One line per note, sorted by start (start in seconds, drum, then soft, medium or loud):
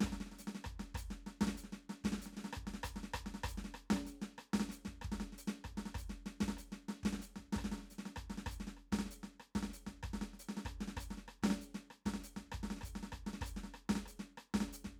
0.01 kick soft
0.01 snare medium
0.07 cross-stick soft
0.12 snare soft
0.20 snare soft
0.26 snare soft
0.32 snare soft
0.39 snare soft
0.39 hi-hat pedal medium
0.48 snare soft
0.55 snare soft
0.64 kick soft
0.64 cross-stick medium
0.80 snare soft
0.95 kick soft
0.95 cross-stick medium
0.95 hi-hat pedal medium
1.02 kick soft
1.11 snare soft
1.27 snare soft
1.41 kick soft
1.41 snare medium
1.47 snare medium
1.55 snare soft
1.55 hi-hat pedal medium
1.64 snare soft
1.73 snare soft
1.90 snare soft
2.04 kick soft
2.04 snare medium
2.12 snare soft
2.18 snare soft
2.18 hi-hat pedal medium
2.26 snare soft
2.33 snare soft
2.37 snare soft
2.45 snare soft
2.53 kick soft
2.53 cross-stick medium
2.67 snare soft
2.74 snare soft
2.84 kick soft
2.84 cross-stick medium
2.84 hi-hat pedal medium
2.96 snare soft
3.04 snare soft
3.14 kick soft
3.14 cross-stick medium
3.26 snare soft
3.34 snare soft
3.44 kick soft
3.44 cross-stick medium
3.49 hi-hat pedal medium
3.58 snare soft
3.64 snare soft
3.74 cross-stick medium
3.90 kick soft
3.90 snare medium
3.97 cross-stick medium
4.06 snare soft
4.06 hi-hat pedal soft
4.22 snare soft
4.38 cross-stick medium
4.54 kick soft
4.54 snare medium
4.60 snare medium
4.69 snare soft
4.69 hi-hat pedal medium
4.85 kick soft
4.85 snare soft
5.02 kick soft
5.02 cross-stick medium
5.12 snare soft
5.20 snare soft
5.33 snare soft
5.38 hi-hat pedal medium
5.48 snare medium
5.64 kick soft
5.64 cross-stick medium
5.78 snare soft
5.86 snare soft
5.95 kick soft
5.95 cross-stick medium
5.95 hi-hat pedal soft
6.02 kick soft
6.10 snare soft
6.26 snare soft
6.41 kick soft
6.41 snare medium
6.48 snare medium
6.57 cross-stick soft
6.57 hi-hat pedal medium
6.72 snare soft
6.89 snare soft
7.03 kick soft
7.03 snare medium
7.13 snare soft
7.19 snare soft
7.19 hi-hat pedal medium
7.36 kick soft
7.36 snare soft
7.53 kick soft
7.53 snare medium
7.59 cross-stick medium
7.64 snare soft
7.72 snare soft
7.78 snare soft
7.83 snare soft
7.90 snare soft
7.90 hi-hat pedal soft
7.99 snare soft
8.06 snare soft
8.16 kick soft
8.16 cross-stick medium
8.30 snare soft
8.38 snare soft
8.46 kick soft
8.46 cross-stick medium
8.51 hi-hat pedal soft
8.60 snare soft
8.67 snare soft
8.77 cross-stick soft
8.92 kick soft
8.92 snare medium
8.99 snare medium
9.06 snare soft
9.11 hi-hat pedal medium
9.23 snare soft
9.40 cross-stick soft
9.55 kick soft
9.55 snare medium
9.63 snare soft
9.70 snare soft
9.70 hi-hat pedal medium
9.87 kick soft
9.87 snare soft
10.03 kick soft
10.03 cross-stick medium
10.14 snare soft
10.22 snare soft
10.34 snare soft
10.40 snare soft
10.40 hi-hat pedal medium
10.49 snare soft
10.57 snare soft
10.65 kick soft
10.65 cross-stick medium
10.81 snare soft
10.88 snare soft
10.97 kick soft
10.97 cross-stick medium
10.97 hi-hat pedal medium
11.11 snare soft
11.18 snare soft
11.28 cross-stick medium
11.43 kick soft
11.43 snare medium
11.51 snare medium
11.59 snare soft
11.59 hi-hat pedal soft
11.75 snare soft
11.91 cross-stick soft
12.06 kick soft
12.06 snare medium
12.14 snare soft
12.20 snare soft
12.20 hi-hat pedal medium
12.37 kick soft
12.37 snare soft
12.52 kick soft
12.52 cross-stick medium
12.63 snare soft
12.70 snare soft
12.77 snare soft
12.81 kick soft
12.81 cross-stick medium
12.81 hi-hat pedal medium
12.96 snare soft
13.03 snare soft
13.12 kick soft
13.12 cross-stick medium
13.27 snare soft
13.33 snare soft
13.41 kick soft
13.41 cross-stick medium
13.46 hi-hat pedal medium
13.57 snare soft
13.64 snare soft
13.74 cross-stick medium
13.89 kick soft
13.89 snare medium
13.96 snare medium
14.06 cross-stick soft
14.06 hi-hat pedal soft
14.20 snare soft
14.38 cross-stick medium
14.54 kick soft
14.54 snare medium
14.61 snare medium
14.69 cross-stick soft
14.73 hi-hat pedal medium
14.85 kick soft
14.85 snare soft